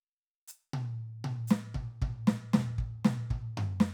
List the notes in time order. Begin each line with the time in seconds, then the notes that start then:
0.48 hi-hat pedal
0.74 mid tom
1.24 mid tom
1.48 snare, hi-hat pedal, crash
1.75 kick, mid tom
2.02 kick, mid tom
2.27 snare, mid tom
2.53 snare, mid tom, floor tom
2.59 snare
2.78 kick, mid tom
3.05 snare, mid tom
3.30 kick, mid tom
3.57 floor tom
3.80 snare